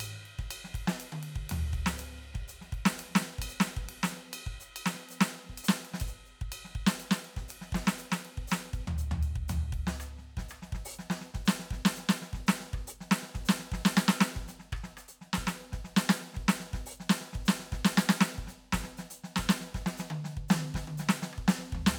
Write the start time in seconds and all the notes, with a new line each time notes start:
0.01 hi-hat pedal, ride bell
0.26 ride
0.39 kick, snare
0.51 hi-hat pedal, ride bell
0.65 snare
0.75 kick, ride
0.88 snare
1.00 hi-hat pedal, ride
1.13 high tom
1.24 ride
1.36 kick
1.42 kick
1.50 floor tom, hi-hat pedal, ride
1.74 kick, ride
1.80 kick
1.87 snare
1.98 hi-hat pedal, ride
2.25 ride
2.35 kick, snare
2.49 hi-hat pedal, ride bell
2.62 snare
2.73 kick, ride
2.79 kick
2.86 snare
2.98 hi-hat pedal, ride
3.16 snare
3.22 snare
3.39 kick, ride bell
3.50 hi-hat pedal
3.61 snare
3.68 snare
3.77 kick
3.83 kick
3.90 ride
4.04 snare, hi-hat pedal
4.13 snare
4.34 ride bell
4.47 kick
4.61 hi-hat pedal
4.77 ride bell
4.87 snare
4.95 snare
5.10 hi-hat pedal, ride
5.21 snare
5.33 hi-hat pedal
5.50 kick
5.58 ride bell
5.64 hi-hat pedal
5.69 snare
5.86 ride
5.94 snare
6.01 kick, ride bell
6.08 hi-hat pedal
6.26 hi-hat pedal
6.42 kick
6.53 hi-hat pedal, ride bell
6.65 snare
6.75 kick, ride
6.81 kick
6.87 snare
7.00 hi-hat pedal, ride
7.12 snare
7.25 ride
7.37 kick, snare
7.42 kick
7.49 hi-hat pedal, ride
7.62 snare
7.73 kick, snare
7.79 kick
7.88 snare
7.98 hi-hat pedal, ride
8.12 snare
8.26 ride
8.38 kick
8.46 kick, hi-hat pedal
8.52 snare, ride bell
8.74 kick, ride bell
8.80 kick
8.88 floor tom
8.99 hi-hat pedal, ride bell
9.12 floor tom
9.19 hi-hat pedal, ride bell
9.36 kick
9.49 floor tom, hi-hat pedal, ride bell
9.61 floor tom
9.73 kick, ride
9.79 kick
9.88 snare
10.00 cross-stick, hi-hat pedal
10.19 snare
10.38 kick, snare
10.43 kick
10.49 cross-stick, hi-hat pedal
10.63 snare
10.73 kick, snare
10.79 kick
10.86 open hi-hat
10.95 hi-hat pedal
10.99 snare
11.11 snare
11.22 snare
11.35 kick, snare
11.42 kick, hi-hat pedal
11.48 snare
11.60 snare
11.71 kick, snare
11.77 kick
11.86 snare
11.96 snare, hi-hat pedal
12.10 snare
12.22 snare
12.34 kick, snare
12.47 snare, hi-hat pedal
12.61 snare
12.74 kick, cross-stick
12.80 kick
12.88 open hi-hat, hi-hat pedal
13.01 snare
13.12 snare
13.23 snare
13.35 kick, snare
13.46 snare, hi-hat pedal
13.60 snare
13.72 kick, snare
13.78 kick
13.86 snare
13.97 snare, hi-hat pedal
14.09 snare
14.21 snare
14.36 kick, snare
14.49 snare, hi-hat pedal
14.60 snare
14.73 kick, cross-stick
14.79 kick
14.84 snare
14.98 cross-stick, hi-hat pedal
15.09 closed hi-hat
15.22 snare
15.34 snare
15.38 kick
15.48 snare, hi-hat pedal
15.61 snare
15.73 kick, snare
15.85 snare
15.97 snare, hi-hat pedal
16.10 snare
16.17 snare
16.22 snare
16.35 kick, snare
16.49 snare, hi-hat pedal
16.61 snare
16.74 kick, snare
16.80 kick
16.87 open hi-hat
16.93 hi-hat pedal
17.01 snare
17.10 snare
17.22 snare
17.33 kick, snare
17.44 kick, hi-hat pedal
17.49 snare
17.60 snare
17.73 kick, snare
17.79 kick
17.85 snare
17.98 snare, hi-hat pedal
18.10 snare
18.21 snare
18.35 kick, snare
18.48 snare, hi-hat pedal
18.63 snare
18.73 kick, snare
18.84 snare
18.98 snare, hi-hat pedal
19.11 closed hi-hat
19.24 snare
19.37 kick, snare
19.50 snare, hi-hat pedal
19.62 snare
19.75 kick, snare
19.87 snare
19.98 snare, hi-hat pedal
20.11 high tom
20.25 snare
20.38 kick
20.49 snare, hi-hat pedal, high tom
20.75 kick, snare
20.88 high tom
20.98 snare, hi-hat pedal
21.09 snare
21.21 snare, hi-hat pedal
21.34 cross-stick
21.39 kick
21.48 snare, hi-hat pedal
21.59 snare
21.73 kick, floor tom
21.79 kick
21.87 snare
21.94 snare